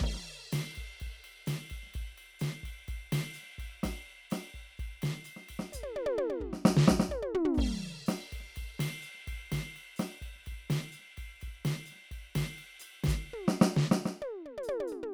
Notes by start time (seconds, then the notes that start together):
0.01 kick, crash
0.09 kick
0.14 snare
0.52 snare, hi-hat pedal, ride
0.75 kick, ride
0.99 kick, hi-hat pedal, ride
1.07 kick
1.24 ride
1.46 snare, hi-hat pedal, ride
1.70 kick, ride
1.83 snare
1.87 snare
1.93 kick, hi-hat pedal, ride
2.01 kick
2.18 ride
2.39 snare, hi-hat pedal, ride
2.63 kick, ride
2.69 kick
2.87 kick, hi-hat pedal, ride
2.94 kick
3.12 snare, ride
3.34 hi-hat pedal, ride
3.43 snare
3.59 kick, ride
3.64 kick
3.82 kick, snare, hi-hat pedal, ride
3.90 kick
4.30 snare, hi-hat pedal, ride
4.54 kick, ride
4.77 kick, hi-hat pedal, ride
5.02 snare, ride
5.13 snare
5.25 hi-hat pedal, ride
5.37 snare
5.49 kick, ride
5.59 snare
5.72 kick, hi-hat pedal, high tom
5.83 high tom
5.96 high tom
6.06 high tom
6.18 high tom
6.30 high tom
6.41 kick, mid tom
6.53 snare
6.65 kick, snare
6.77 snare
6.88 kick, snare
6.95 kick
7.00 snare
7.09 kick, high tom
7.14 kick
7.22 high tom
7.34 floor tom
7.45 floor tom
7.54 kick, floor tom, hi-hat pedal
7.58 crash
7.66 kick
8.06 snare, hi-hat pedal, ride
8.32 kick, ride
8.40 snare
8.55 kick, hi-hat pedal, ride
8.62 kick
8.80 snare, ride
9.02 hi-hat pedal
9.15 snare
9.27 kick, ride
9.33 kick
9.50 kick, snare, hi-hat pedal, ride
9.57 kick
9.76 ride
9.96 snare, hi-hat pedal, ride
10.22 kick, ride
10.36 snare
10.44 kick, hi-hat pedal, ride
10.52 kick
10.70 snare, ride
10.80 snare
10.92 hi-hat pedal, ride
10.99 snare
11.17 kick, ride
11.40 kick, hi-hat pedal, ride
11.48 kick
11.65 snare, ride
11.86 hi-hat pedal, ride
11.92 snare
11.96 snare
12.11 kick, ride
12.34 kick, snare, hi-hat pedal, ride
12.41 kick
12.58 ride
12.80 hi-hat pedal, ride
13.04 kick, snare, ride
13.09 hi-hat pedal
13.14 kick
13.33 mid tom
13.48 snare
13.62 snare
13.77 snare
13.92 snare
14.06 snare
14.22 high tom
14.45 high tom
14.57 high tom
14.63 hi-hat pedal
14.69 high tom
14.80 high tom
14.88 hi-hat pedal, mid tom
15.03 mid tom